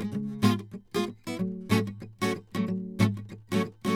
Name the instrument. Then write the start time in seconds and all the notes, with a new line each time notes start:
acoustic guitar
0.00 G#3 F4
0.13 C#3 G#3
0.43 G#3 B3 F4
0.95 G#3 A#3 F4 G#4
1.27 B3 E4
1.38 F#3 A3
1.70 F#3 A3 C#4 F#4
2.22 F#3 A3 C#4 F#4
2.56 F#3 A3 C#4
2.70 A3
3.00 F#3 A3 C#4
3.52 F#3 A3 C#4 F#4
3.85 A3 C#4 F#4